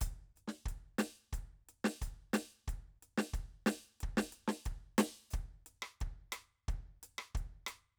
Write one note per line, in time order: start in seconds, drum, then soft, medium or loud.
0.01 open hi-hat medium
0.01 kick medium
0.36 closed hi-hat soft
0.36 hi-hat pedal soft
0.48 snare medium
0.66 kick medium
0.66 closed hi-hat soft
0.99 snare medium
0.99 closed hi-hat medium
1.33 kick medium
1.33 closed hi-hat medium
1.69 closed hi-hat soft
1.84 snare medium
2.02 closed hi-hat soft
2.02 kick medium
2.33 snare medium
2.33 closed hi-hat medium
2.68 kick medium
2.68 closed hi-hat soft
3.03 closed hi-hat soft
3.18 snare medium
3.34 kick medium
3.34 closed hi-hat soft
3.66 snare medium
3.66 closed hi-hat medium
4.01 kick medium
4.01 closed hi-hat soft
4.17 snare medium
4.32 closed hi-hat soft
4.48 snare medium
4.66 kick medium
4.66 closed hi-hat soft
4.98 snare loud
4.98 open hi-hat medium
5.31 kick medium
5.31 closed hi-hat soft
5.31 hi-hat pedal medium
5.66 closed hi-hat soft
5.82 cross-stick medium
6.01 kick medium
6.01 closed hi-hat soft
6.32 cross-stick medium
6.32 closed hi-hat medium
6.68 kick medium
6.68 closed hi-hat soft
7.03 closed hi-hat medium
7.18 cross-stick medium
7.35 kick medium
7.35 closed hi-hat soft
7.67 cross-stick medium
7.67 closed hi-hat medium